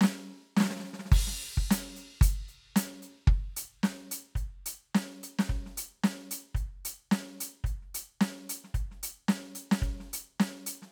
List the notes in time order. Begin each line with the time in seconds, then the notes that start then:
0.02 snare
0.04 snare
0.42 snare
0.57 snare
0.60 snare
0.63 snare
0.65 snare
0.76 snare
0.80 snare
0.84 snare
0.88 snare
0.94 snare
0.99 snare
1.05 snare
1.12 kick, snare, crash
1.27 snare
1.40 closed hi-hat
1.57 kick
1.71 closed hi-hat, snare
1.96 closed hi-hat
2.21 closed hi-hat, kick
2.48 closed hi-hat
2.76 closed hi-hat, snare
3.02 closed hi-hat
3.27 kick
3.57 closed hi-hat
3.83 snare
4.11 closed hi-hat
4.35 closed hi-hat, kick
4.66 closed hi-hat
4.95 snare
5.23 closed hi-hat
5.39 snare
5.49 kick
5.66 snare
5.77 closed hi-hat
6.04 snare
6.31 closed hi-hat
6.55 closed hi-hat, kick
6.76 snare
6.85 closed hi-hat
7.11 snare
7.41 closed hi-hat
7.64 closed hi-hat, kick
7.82 snare
7.95 closed hi-hat
8.21 snare
8.49 closed hi-hat
8.64 snare
8.74 closed hi-hat, kick
8.91 snare
9.03 closed hi-hat
9.29 snare
9.55 closed hi-hat
9.71 snare
9.82 kick, closed hi-hat
10.00 snare
10.07 snare
10.13 closed hi-hat
10.40 snare
10.66 closed hi-hat
10.82 snare